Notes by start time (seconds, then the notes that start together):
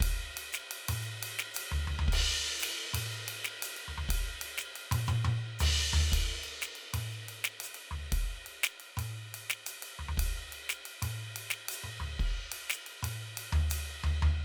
0.01 kick, ride
0.37 ride
0.53 snare, hi-hat pedal
0.72 ride
0.89 mid tom, ride
1.03 hi-hat pedal
1.23 ride
1.39 snare
1.55 hi-hat pedal, ride
1.72 floor tom
1.88 floor tom
1.99 floor tom
2.09 kick
2.13 ride
2.60 snare, hi-hat pedal
2.64 ride
2.94 mid tom, ride
3.12 hi-hat pedal
3.28 ride
3.45 snare
3.63 hi-hat pedal, ride
3.77 ride
3.88 floor tom
3.98 floor tom
4.09 kick, hi-hat pedal, ride
4.42 ride
4.58 snare, hi-hat pedal
4.76 ride
4.92 mid tom, ride
5.07 hi-hat pedal, mid tom
5.25 mid tom
5.59 floor tom, hi-hat pedal, ride
5.94 floor tom
6.13 kick, ride
6.44 ride
6.62 snare, hi-hat pedal
6.76 ride
6.94 mid tom, ride
7.11 hi-hat pedal
7.29 ride
7.45 snare
7.61 hi-hat pedal, ride
7.75 ride
7.91 floor tom
8.13 kick, ride
8.47 ride
8.64 snare, hi-hat pedal
8.80 ride
8.97 mid tom, ride
9.35 ride
9.50 snare
9.67 hi-hat pedal, ride
9.83 ride
9.99 floor tom
10.09 floor tom
10.18 kick, ride
10.53 ride
10.70 snare, hi-hat pedal
10.86 ride
11.03 mid tom, ride
11.36 ride
11.51 snare
11.69 hi-hat pedal, ride
11.84 mid tom
12.00 floor tom
12.20 kick, ride
12.36 ride
12.52 ride
12.70 snare, hi-hat pedal
12.87 ride
13.03 mid tom, ride
13.38 ride
13.53 floor tom
13.70 hi-hat pedal, ride
14.04 floor tom
14.23 floor tom